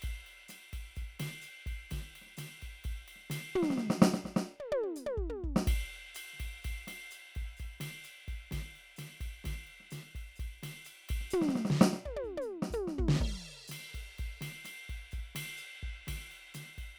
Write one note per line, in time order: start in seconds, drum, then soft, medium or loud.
0.01 kick soft
0.01 hi-hat pedal soft
0.01 ride medium
0.09 kick soft
0.26 ride soft
0.48 snare soft
0.48 hi-hat pedal medium
0.48 ride medium
0.73 kick soft
0.73 ride soft
0.95 kick soft
0.95 hi-hat pedal soft
0.95 ride soft
1.02 kick soft
1.19 snare soft
1.19 snare medium
1.19 ride medium
1.41 hi-hat pedal medium
1.41 ride soft
1.66 kick soft
1.66 ride soft
1.71 kick soft
1.90 kick soft
1.90 snare soft
1.90 hi-hat pedal soft
1.90 ride medium
1.97 kick soft
2.15 ride soft
2.21 snare soft
2.26 snare soft
2.37 snare soft
2.37 hi-hat pedal medium
2.37 ride medium
2.62 kick soft
2.62 ride soft
2.81 kick soft
2.81 hi-hat pedal soft
2.81 ride soft
2.90 kick soft
3.07 ride soft
3.16 snare soft
3.29 snare soft
3.29 snare medium
3.29 hi-hat pedal medium
3.29 ride medium
3.55 floor tom loud
3.62 snare soft
3.70 snare soft
3.77 snare soft
3.86 snare soft
3.90 snare medium
4.01 kick soft
4.01 snare loud
4.13 snare medium
4.23 kick soft
4.23 snare soft
4.36 snare medium
4.59 high tom medium
4.71 high tom loud
4.83 high tom soft
4.96 hi-hat pedal medium
4.96 high tom soft
5.06 high tom loud
5.17 kick soft
5.23 kick soft
5.29 mid tom medium
5.43 kick soft
5.49 kick soft
5.56 snare medium
5.67 kick medium
5.67 ride loud
5.73 kick soft
6.14 hi-hat pedal loud
6.14 ride medium
6.33 snare soft
6.39 kick soft
6.39 ride medium
6.45 kick soft
6.62 kick soft
6.62 hi-hat pedal soft
6.62 ride medium
6.70 kick soft
6.87 snare soft
6.87 ride medium
7.11 hi-hat pedal medium
7.11 ride soft
7.35 kick soft
7.35 ride soft
7.41 kick soft
7.56 kick soft
7.56 hi-hat pedal soft
7.56 ride soft
7.65 kick soft
7.80 snare soft
7.80 ride medium
8.04 hi-hat pedal medium
8.04 ride soft
8.28 kick soft
8.28 ride soft
8.33 kick soft
8.51 kick soft
8.51 snare soft
8.51 hi-hat pedal soft
8.51 ride medium
8.58 kick soft
8.75 ride soft
8.96 snare soft
8.96 hi-hat pedal medium
8.96 ride medium
9.20 kick soft
9.20 ride soft
9.25 kick soft
9.44 kick soft
9.44 snare soft
9.44 hi-hat pedal soft
9.44 ride medium
9.51 kick soft
9.66 ride soft
9.80 snare soft
9.90 snare soft
9.90 hi-hat pedal medium
9.90 ride medium
10.15 kick soft
10.15 ride soft
10.35 kick soft
10.35 hi-hat pedal soft
10.39 ride soft
10.44 kick soft
10.63 snare soft
10.63 ride medium
10.85 hi-hat pedal medium
10.85 ride soft
11.05 hi-hat pedal soft
11.05 ride medium
11.10 kick soft
11.16 kick soft
11.21 snare soft
11.30 hi-hat pedal loud
11.30 floor tom loud
11.41 snare soft
11.48 snare soft
11.55 snare soft
11.65 snare soft
11.70 snare medium
11.81 snare loud
11.93 snare soft
12.05 kick soft
12.05 high tom medium
12.16 high tom medium
12.24 kick soft
12.24 hi-hat pedal soft
12.29 high tom soft
12.37 open hi-hat soft
12.37 high tom medium
12.42 hi-hat pedal medium
12.49 high tom soft
12.62 snare medium
12.70 kick soft
12.70 hi-hat pedal medium
12.70 mid tom loud
12.87 snare soft
12.97 kick soft
12.97 floor tom medium
13.05 kick soft
13.05 snare loud
13.15 snare soft
13.20 kick soft
13.20 crash medium
13.26 kick soft
13.67 snare soft
13.67 hi-hat pedal loud
13.67 ride medium
13.94 kick soft
13.94 ride soft
14.15 kick soft
14.15 hi-hat pedal soft
14.15 ride soft
14.24 kick soft
14.40 snare soft
14.40 ride medium
14.64 snare soft
14.64 hi-hat pedal medium
14.64 ride medium
14.89 kick soft
14.89 ride soft
15.11 kick soft
15.11 hi-hat pedal soft
15.11 ride soft
15.18 kick soft
15.35 snare soft
15.35 ride loud
15.57 hi-hat pedal medium
15.83 kick soft
15.88 kick soft
16.05 kick soft
16.05 snare soft
16.05 hi-hat pedal soft
16.05 ride medium
16.13 kick soft
16.31 ride soft
16.54 snare soft
16.54 hi-hat pedal medium
16.54 ride medium
16.78 kick soft
16.78 ride soft